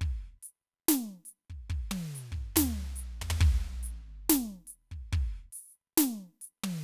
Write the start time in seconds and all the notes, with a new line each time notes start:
0.01 kick
0.43 hi-hat pedal
0.88 snare
1.25 hi-hat pedal
1.50 kick
1.70 kick
1.91 high tom
2.15 hi-hat pedal
2.32 kick
2.56 snare, floor tom
2.96 hi-hat pedal
3.21 floor tom
3.30 floor tom
3.41 kick
3.83 hi-hat pedal
4.30 snare
4.67 hi-hat pedal
4.91 kick
5.13 kick
5.52 hi-hat pedal
5.97 snare
6.41 hi-hat pedal
6.64 high tom